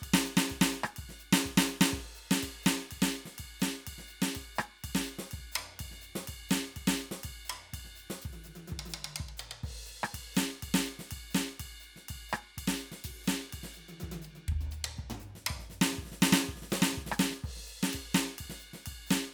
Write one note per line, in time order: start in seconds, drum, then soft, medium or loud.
0.02 kick soft
0.02 ride bell loud
0.14 snare loud
0.22 hi-hat pedal medium
0.22 ride medium
0.37 snare loud
0.50 kick soft
0.50 ride bell medium
0.57 kick soft
0.61 snare loud
0.71 hi-hat pedal medium
0.71 ride medium
0.84 cross-stick medium
0.96 kick soft
0.96 ride bell loud
1.04 kick soft
1.09 snare soft
1.19 hi-hat pedal medium
1.19 ride soft
1.33 snare loud
1.45 kick soft
1.45 ride medium
1.57 snare loud
1.66 hi-hat pedal medium
1.66 ride medium
1.81 snare loud
1.93 kick soft
1.93 crash medium
1.99 kick soft
2.15 hi-hat pedal medium
2.31 snare loud
2.43 kick soft
2.43 ride bell loud
2.48 kick soft
2.63 snare loud
2.63 hi-hat pedal medium
2.91 kick soft
2.91 ride bell loud
2.97 kick soft
3.02 snare loud
3.11 hi-hat pedal medium
3.11 ride soft
3.26 snare medium
3.38 kick soft
3.38 ride bell loud
3.59 snare medium
3.59 hi-hat pedal medium
3.69 snare soft
3.87 kick soft
3.87 ride bell loud
3.93 kick soft
3.98 snare soft
4.07 hi-hat pedal medium
4.07 ride soft
4.22 snare medium
4.35 kick soft
4.35 ride bell loud
4.55 cross-stick medium
4.55 hi-hat pedal medium
4.78 hi-hat pedal soft
4.84 kick soft
4.84 ride bell loud
4.90 kick soft
4.95 snare medium
5.04 hi-hat pedal medium
5.08 ride medium
5.19 snare medium
5.26 hi-hat pedal soft
5.31 kick soft
5.31 ride bell loud
5.40 kick soft
5.52 hi-hat pedal medium
5.52 floor tom loud
5.79 kick soft
5.79 ride bell loud
5.86 kick soft
5.91 snare soft
6.01 hi-hat pedal medium
6.01 ride soft
6.15 snare medium
6.24 hi-hat pedal soft
6.24 ride bell loud
6.29 kick soft
6.49 snare loud
6.49 hi-hat pedal medium
6.71 hi-hat pedal soft
6.76 kick soft
6.76 ride bell medium
6.82 kick soft
6.87 snare loud
6.97 hi-hat pedal medium
6.97 ride soft
7.11 snare medium
7.23 kick soft
7.23 ride bell loud
7.30 kick soft
7.45 hi-hat pedal medium
7.50 floor tom loud
7.73 kick soft
7.73 ride bell loud
7.80 kick soft
7.85 snare soft
7.95 hi-hat pedal medium
7.95 ride medium
8.10 snare medium
8.22 kick soft
8.22 ride medium
8.31 kick soft
8.31 high tom medium
8.44 hi-hat pedal medium
8.44 high tom medium
8.55 high tom medium
8.68 high tom medium
8.72 kick soft
8.79 kick soft
8.79 high tom medium
8.85 hi-hat pedal medium
8.85 high tom medium
8.94 high tom loud
9.04 high tom loud
9.16 high tom loud
9.20 kick soft
9.27 kick soft
9.27 high tom medium
9.37 hi-hat pedal medium
9.37 mid tom medium
9.51 mid tom medium
9.64 kick soft
9.64 crash medium
9.70 kick soft
9.86 hi-hat pedal medium
10.03 cross-stick medium
10.14 kick soft
10.14 ride bell loud
10.34 snare loud
10.34 hi-hat pedal medium
10.57 hi-hat pedal soft
10.63 kick soft
10.63 ride bell loud
10.69 kick soft
10.74 snare loud
10.83 hi-hat pedal medium
10.83 ride medium
10.99 snare medium
11.11 kick soft
11.11 ride bell loud
11.18 kick soft
11.30 hi-hat pedal medium
11.35 snare loud
11.60 kick soft
11.60 ride bell loud
11.80 hi-hat pedal medium
11.80 ride soft
11.96 snare soft
12.09 kick soft
12.09 ride bell loud
12.16 kick soft
12.29 cross-stick medium
12.29 hi-hat pedal medium
12.58 kick soft
12.58 ride bell loud
12.68 snare medium
12.76 hi-hat pedal medium
12.76 ride soft
12.92 snare medium
13.04 kick soft
13.04 ride loud
13.11 kick soft
13.24 snare loud
13.24 hi-hat pedal medium
13.53 kick soft
13.53 ride bell loud
13.59 kick soft
13.63 snare medium
13.74 hi-hat pedal medium
13.74 high tom soft
13.88 high tom medium
14.00 kick soft
14.00 high tom loud
14.09 kick soft
14.09 high tom loud
14.22 hi-hat pedal medium
14.22 high tom soft
14.35 high tom medium
14.48 kick soft
14.48 mid tom loud
14.58 kick soft
14.58 mid tom soft
14.71 hi-hat pedal medium
14.71 mid tom soft
14.84 mid tom loud
14.97 kick soft
14.97 floor tom soft
15.06 kick soft
15.10 floor tom loud
15.20 hi-hat pedal medium
15.35 snare soft
15.46 kick soft
15.46 floor tom loud
15.57 kick soft
15.57 snare soft
15.70 snare soft
15.70 hi-hat pedal medium
15.81 snare loud
15.93 snare soft
15.98 kick soft
15.98 snare soft
16.04 kick soft
16.04 snare soft
16.12 snare medium
16.20 snare loud
16.20 hi-hat pedal medium
16.33 snare loud
16.44 snare soft
16.49 kick soft
16.49 snare soft
16.56 snare soft
16.62 snare medium
16.67 snare soft
16.67 hi-hat pedal medium
16.72 snare loud
16.82 snare loud
16.93 snare soft
16.97 kick soft
16.97 snare soft
17.04 kick soft
17.04 snare soft
17.04 snare medium
17.12 cross-stick medium
17.18 snare loud
17.18 hi-hat pedal medium
17.31 snare soft
17.44 kick soft
17.44 crash medium
17.49 kick soft
17.55 kick soft
17.55 snare soft
17.66 hi-hat pedal medium
17.83 snare medium
17.93 kick soft
17.93 ride bell loud
18.00 kick soft
18.14 snare loud
18.14 hi-hat pedal medium
18.38 kick soft
18.38 ride bell loud
18.46 kick soft
18.46 snare medium
18.59 hi-hat pedal medium
18.59 ride soft
18.73 snare medium
18.86 kick soft
18.86 ride bell loud
18.93 kick soft
19.07 hi-hat pedal medium
19.11 snare loud